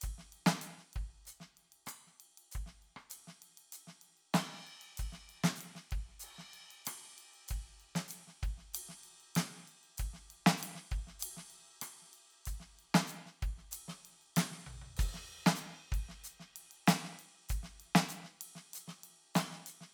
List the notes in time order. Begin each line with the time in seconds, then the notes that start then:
0.01 kick, hi-hat pedal, ride
0.18 snare
0.32 ride
0.46 snare
0.61 hi-hat pedal, ride
0.78 snare
0.93 kick, ride
1.25 hi-hat pedal, ride, floor tom
1.40 snare
1.57 ride
1.72 ride
1.86 cross-stick, hi-hat pedal, ride bell
2.07 snare
2.20 ride
2.38 ride
2.51 kick, hi-hat pedal, ride
2.66 snare
2.82 ride
2.96 cross-stick
3.10 hi-hat pedal, ride
3.27 snare
3.42 ride
3.57 ride
3.72 hi-hat pedal, ride
3.87 snare
4.01 ride
4.17 ride
4.34 snare, hi-hat pedal, ride
4.54 snare
4.67 ride
4.81 ride
4.97 kick, hi-hat pedal, ride
5.12 snare
5.29 ride
5.44 snare
5.56 hi-hat pedal
5.61 ride
5.75 snare
5.91 kick, ride
6.09 snare
6.20 hi-hat pedal, ride
6.38 snare
6.53 ride
6.71 ride
6.85 cross-stick, hi-hat pedal, ride
7.18 ride
7.34 ride
7.48 kick, hi-hat pedal, ride
7.67 snare
7.80 ride
7.95 snare
8.08 hi-hat pedal, ride
8.27 snare
8.43 kick, ride
8.58 snare
8.74 hi-hat pedal, ride
8.89 snare
9.04 ride
9.20 ride
9.35 snare, hi-hat pedal, ride
9.55 snare
9.68 ride
9.83 ride
9.97 kick, hi-hat pedal, ride
10.13 snare
10.30 ride
10.46 snare
10.58 hi-hat pedal
10.63 ride
10.75 snare
10.91 kick, ride
11.07 snare
11.19 hi-hat pedal, ride
11.37 snare
11.50 ride
11.66 ride
11.82 cross-stick, hi-hat pedal, ride
12.01 snare
12.13 ride
12.30 ride
12.46 kick, hi-hat pedal, ride
12.60 snare
12.79 ride
12.94 snare
13.07 hi-hat pedal, ride
13.26 snare
13.42 kick, ride
13.58 snare
13.71 hi-hat pedal, ride
13.88 snare
14.05 ride
14.21 ride
14.36 snare, hi-hat pedal, ride
14.52 snare
14.66 floor tom
14.82 floor tom
14.97 kick, hi-hat pedal, crash
15.14 snare
15.28 ride
15.46 snare
15.55 hi-hat pedal
15.92 kick, ride
16.09 snare
16.24 hi-hat pedal, ride
16.40 snare
16.56 ride
16.71 ride
16.87 snare, hi-hat pedal, ride
17.04 snare
17.19 ride
17.49 kick, hi-hat pedal, ride
17.63 snare
17.80 ride
17.95 snare
18.09 hi-hat pedal, ride
18.23 snare
18.41 ride
18.55 snare
18.73 hi-hat pedal, ride
18.88 snare
19.04 ride
19.35 snare, hi-hat pedal, ride
19.51 snare
19.66 hi-hat pedal, ride
19.81 snare
19.87 snare